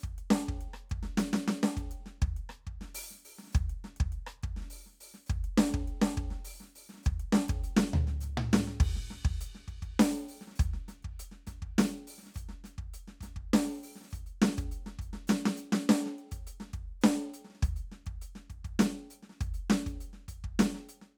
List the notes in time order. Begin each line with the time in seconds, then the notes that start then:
0.01 kick, hi-hat pedal
0.05 closed hi-hat
0.19 closed hi-hat
0.31 snare
0.47 kick, closed hi-hat
0.62 closed hi-hat
0.74 cross-stick
0.90 kick, closed hi-hat
1.04 snare
1.18 snare, hi-hat pedal
1.34 snare
1.49 snare
1.64 snare
1.78 kick, closed hi-hat
1.92 closed hi-hat
2.07 snare
2.22 kick, closed hi-hat
2.37 closed hi-hat
2.50 cross-stick
2.68 kick
2.82 snare
2.84 snare
2.95 open hi-hat
3.11 snare
3.15 snare
3.19 snare
3.26 open hi-hat
3.39 snare
3.44 snare
3.48 snare
3.51 snare, hi-hat pedal
3.56 kick, closed hi-hat
3.70 closed hi-hat
3.85 snare
3.97 kick, closed hi-hat
4.13 closed hi-hat
4.27 cross-stick
4.44 kick, closed hi-hat
4.57 snare
4.61 snare
4.63 snare
4.71 open hi-hat
4.87 snare
4.94 snare
5.01 open hi-hat
5.15 snare
5.27 kick, hi-hat pedal
5.31 closed hi-hat
5.45 closed hi-hat
5.58 snare
5.73 kick, closed hi-hat
5.88 closed hi-hat
6.02 snare
6.10 snare
6.18 kick, closed hi-hat
6.31 snare
6.36 snare
6.42 open hi-hat, snare
6.61 snare
6.64 snare
6.76 open hi-hat
6.90 snare
6.94 snare
6.98 snare
7.01 snare, hi-hat pedal
7.06 kick, snare, closed hi-hat
7.20 closed hi-hat
7.33 snare
7.36 snare
7.49 kick, closed hi-hat
7.64 closed hi-hat
7.77 snare
7.94 floor tom
8.08 snare
8.21 snare, hi-hat pedal
8.38 mid tom
8.54 snare
8.68 snare
8.71 snare
8.81 kick, crash
8.96 snare
9.11 snare
9.25 kick
9.42 closed hi-hat
9.56 snare
9.69 kick, closed hi-hat
9.83 kick, closed hi-hat
10.00 open hi-hat, snare
10.29 open hi-hat
10.42 snare
10.48 snare
10.52 snare
10.56 kick, hi-hat pedal
10.60 closed hi-hat
10.74 snare
10.89 closed hi-hat, snare
11.03 kick, closed hi-hat
11.20 closed hi-hat
11.32 snare
11.48 closed hi-hat, kick, snare
11.63 kick, closed hi-hat
11.79 open hi-hat, snare
12.08 open hi-hat
12.19 snare
12.24 snare
12.27 snare
12.29 snare
12.35 closed hi-hat, kick, hi-hat pedal
12.50 snare
12.65 closed hi-hat, snare
12.79 kick, closed hi-hat
12.94 closed hi-hat
13.08 snare
13.21 closed hi-hat, kick, snare
13.37 kick, closed hi-hat
13.54 open hi-hat, snare
13.84 open hi-hat
13.96 snare
14.02 snare
14.05 snare
14.11 closed hi-hat, kick, hi-hat pedal
14.27 closed hi-hat
14.43 snare
14.50 snare
14.58 closed hi-hat, kick, snare
14.72 closed hi-hat
14.87 snare
15.00 closed hi-hat, kick
15.14 snare
15.28 snare, hi-hat pedal
15.46 snare
15.57 hi-hat pedal
15.73 snare
15.90 snare
16.07 snare
16.19 closed hi-hat
16.32 closed hi-hat, kick
16.48 closed hi-hat
16.61 snare
16.69 snare
16.74 kick, closed hi-hat
16.89 open hi-hat
17.02 snare, hi-hat pedal
17.20 snare, closed hi-hat
17.34 closed hi-hat
17.45 snare
17.51 snare
17.56 snare
17.61 closed hi-hat, kick, snare
17.77 closed hi-hat
17.92 snare
18.07 kick, closed hi-hat
18.22 closed hi-hat
18.36 snare
18.50 kick, closed hi-hat
18.65 kick, closed hi-hat
18.80 open hi-hat, snare
19.11 open hi-hat, hi-hat pedal
19.23 snare
19.30 snare
19.33 snare
19.41 closed hi-hat, kick
19.55 closed hi-hat
19.71 snare
19.87 closed hi-hat, kick
20.01 closed hi-hat
20.14 snare
20.19 snare
20.29 closed hi-hat, kick
20.45 kick
20.60 closed hi-hat, snare
20.75 snare
20.78 snare
20.90 closed hi-hat
21.02 snare